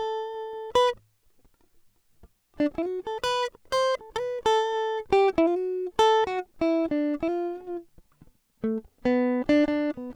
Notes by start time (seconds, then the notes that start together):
0.01 A4
0.76 B4
2.62 D4
2.80 F#4
3.08 A4
3.25 B4
3.73 C5
3.96 A#4
4.17 B4
4.47 A4
5.14 G4
5.39 E4
5.56 F#4
6.00 A4
6.29 F#4
6.63 E4
6.93 D4
7.24 F4
8.65 A3
9.07 B3
9.51 D4
9.65 D4
9.92 B3